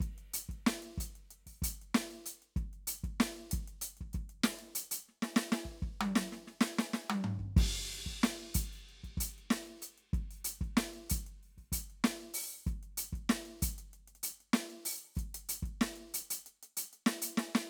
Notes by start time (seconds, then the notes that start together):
0.01 kick, closed hi-hat
0.18 closed hi-hat
0.34 closed hi-hat
0.49 kick, closed hi-hat
0.67 snare
0.83 closed hi-hat
0.98 closed hi-hat, kick
1.16 closed hi-hat
1.31 closed hi-hat
1.47 kick, open hi-hat
1.62 closed hi-hat, kick
1.82 closed hi-hat
1.95 snare
2.11 open hi-hat
2.26 closed hi-hat
2.42 closed hi-hat
2.57 kick, closed hi-hat
2.73 closed hi-hat
2.88 closed hi-hat
3.04 kick, closed hi-hat
3.20 snare
3.35 closed hi-hat
3.52 kick, closed hi-hat
3.68 closed hi-hat
3.82 closed hi-hat
3.97 closed hi-hat
4.01 kick
4.14 kick, closed hi-hat
4.30 closed hi-hat
4.41 kick, snare
4.59 closed hi-hat
4.75 closed hi-hat
4.92 closed hi-hat
5.09 snare
5.23 snare
5.36 snare
5.52 snare
5.66 kick
5.83 kick
6.01 high tom
6.16 snare
6.33 snare
6.48 snare
6.61 snare
6.79 snare
6.94 snare
7.10 high tom
7.24 floor tom
7.39 kick
7.57 kick, ride
7.93 closed hi-hat
8.07 kick
8.11 closed hi-hat
8.24 snare
8.40 closed hi-hat
8.55 closed hi-hat, kick
8.73 open hi-hat
8.89 closed hi-hat
9.04 kick, open hi-hat
9.18 closed hi-hat, kick
9.38 closed hi-hat
9.51 snare
9.66 open hi-hat
9.82 closed hi-hat
9.98 closed hi-hat
10.14 kick, closed hi-hat
10.31 open hi-hat
10.45 closed hi-hat
10.61 kick, closed hi-hat
10.77 snare
10.94 closed hi-hat
11.10 closed hi-hat, kick
11.27 closed hi-hat
11.43 open hi-hat
11.58 kick, open hi-hat
11.72 closed hi-hat, kick
11.90 closed hi-hat
12.04 snare
12.19 closed hi-hat
12.34 open hi-hat
12.54 open hi-hat
12.67 kick, hi-hat pedal
12.83 closed hi-hat
12.98 closed hi-hat
13.13 kick, closed hi-hat
13.30 snare
13.46 closed hi-hat
13.63 closed hi-hat, kick
13.78 closed hi-hat
13.94 closed hi-hat
14.08 closed hi-hat
14.15 closed hi-hat
14.23 closed hi-hat
14.41 closed hi-hat
14.54 snare
14.70 closed hi-hat
14.86 open hi-hat
15.05 open hi-hat
15.16 kick, closed hi-hat, hi-hat pedal
15.35 closed hi-hat
15.49 closed hi-hat
15.63 kick, closed hi-hat
15.81 snare
15.96 closed hi-hat
16.14 closed hi-hat
16.31 closed hi-hat
16.46 closed hi-hat
16.63 closed hi-hat
16.77 closed hi-hat
16.93 closed hi-hat
17.07 snare
17.22 closed hi-hat
17.38 snare
17.55 snare